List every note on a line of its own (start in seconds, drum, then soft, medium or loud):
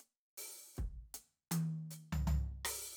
0.00 closed hi-hat soft
0.37 open hi-hat medium
0.74 kick medium
0.74 closed hi-hat soft
0.74 hi-hat pedal soft
1.14 closed hi-hat medium
1.51 closed hi-hat medium
1.51 high tom medium
1.90 hi-hat pedal medium
2.12 floor tom medium
2.27 floor tom medium
2.65 open hi-hat loud
2.65 cross-stick medium